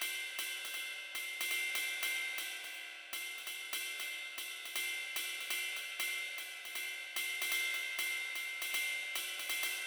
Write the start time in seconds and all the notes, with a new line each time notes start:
0.03 ride
0.40 ride
0.66 ride
0.75 ride
1.16 ride
1.42 ride
1.52 ride
1.76 ride
2.04 ride
2.39 ride
2.65 ride
2.75 ride
3.14 ride
3.39 ride
3.48 ride
3.74 ride
4.01 ride
4.39 ride
4.66 ride
4.77 ride
5.17 ride
5.42 ride
5.51 ride
5.78 ride
6.01 ride
6.39 ride
6.66 ride
6.76 ride
7.17 ride
7.43 ride
7.75 ride
8.00 ride
8.36 ride
8.63 ride
8.75 ride
9.17 ride
9.41 ride
9.51 ride
9.64 ride
9.74 ride